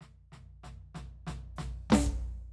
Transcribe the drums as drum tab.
HH |----------p-----|
SD |g-g-g-o-o-o-o---|
FT |g-g-o-o-o-o-o---|
BD |-------------o--|